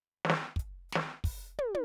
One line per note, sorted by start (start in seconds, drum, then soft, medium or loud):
0.25 snare loud
0.30 snare loud
0.56 open hi-hat medium
0.56 kick medium
0.89 snare medium
0.89 hi-hat pedal soft
0.95 snare loud
1.24 open hi-hat medium
1.24 kick medium
1.49 hi-hat pedal soft
1.58 high tom loud
1.74 high tom loud